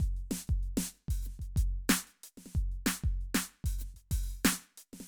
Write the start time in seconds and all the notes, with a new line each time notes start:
0.01 kick, closed hi-hat
0.17 closed hi-hat
0.32 snare
0.48 kick, closed hi-hat
0.64 closed hi-hat
0.78 snare
0.95 closed hi-hat
1.09 open hi-hat, kick
1.23 snare, hi-hat pedal
1.40 kick, closed hi-hat
1.57 open hi-hat, kick
1.89 snare, hi-hat pedal
2.08 closed hi-hat
2.24 closed hi-hat
2.38 snare
2.46 snare
2.56 kick, closed hi-hat
2.72 closed hi-hat
2.87 snare
3.04 kick, closed hi-hat
3.22 closed hi-hat
3.35 snare
3.51 closed hi-hat
3.65 open hi-hat, kick
3.79 snare, hi-hat pedal
3.95 kick, closed hi-hat
4.12 open hi-hat, kick
4.44 snare, hi-hat pedal
4.53 snare
4.62 closed hi-hat
4.78 closed hi-hat
4.94 snare
5.01 snare